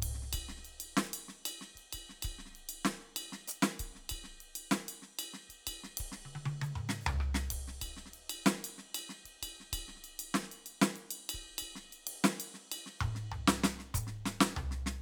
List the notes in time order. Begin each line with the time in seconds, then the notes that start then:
0.01 kick, hi-hat pedal, ride
0.09 kick
0.15 snare
0.23 snare
0.33 kick, ride bell
0.41 kick
0.49 snare
0.58 snare
0.65 ride bell
0.81 ride bell
0.97 snare
1.04 hi-hat pedal
1.14 ride bell
1.29 snare
1.46 hi-hat pedal, ride bell
1.62 snare
1.76 kick, ride
1.93 kick, ride bell
2.10 snare
2.23 kick, ride bell
2.32 kick
2.39 snare
2.46 snare
2.52 snare, ride
2.57 snare
2.70 ride bell
2.85 snare
3.01 snare
3.04 snare
3.17 ride bell
3.33 snare
3.48 hi-hat pedal, ride bell
3.63 snare
3.80 kick, ride bell
3.86 kick
3.96 snare
4.10 kick, ride bell
4.25 snare
4.31 snare
4.41 ride
4.56 ride bell
4.72 snare
4.89 ride bell
5.03 snare
5.19 hi-hat pedal, ride bell
5.34 snare
5.50 kick, ride bell
5.68 kick, ride bell
5.84 snare
5.98 kick, ride
6.12 snare
6.26 high tom
6.46 high tom
6.62 hi-hat pedal, high tom
6.76 mid tom
6.90 snare
7.02 hi-hat pedal
7.07 floor tom
7.21 cross-stick
7.35 snare
7.51 kick, ride
7.59 kick
7.68 snare
7.82 kick, ride bell
7.97 snare
8.06 snare
8.14 ride
8.30 ride bell
8.47 snare
8.65 ride bell
8.79 snare
8.95 hi-hat pedal, ride bell
9.10 snare
9.26 kick, ride
9.43 kick, ride bell
9.61 snare
9.73 kick, ride bell
9.79 kick
9.89 snare
9.96 snare
10.03 snare, ride bell
10.20 ride bell
10.35 snare
10.44 snare
10.52 ride bell
10.67 ride bell
10.82 snare
10.95 hi-hat pedal, ride
11.11 ride bell
11.30 ride bell
11.35 kick
11.59 kick, ride bell
11.76 snare
11.90 snare, ride bell
12.08 ride
12.25 snare
12.41 ride bell
12.55 snare
12.72 hi-hat pedal, ride bell
12.87 snare
13.00 kick, hi-hat pedal, mid tom
13.09 kick
13.16 snare
13.32 floor tom
13.48 snare
13.64 snare
13.80 snare
13.95 kick, hi-hat pedal, mid tom
14.08 snare
14.26 snare
14.41 snare
14.57 floor tom
14.72 snare
14.87 snare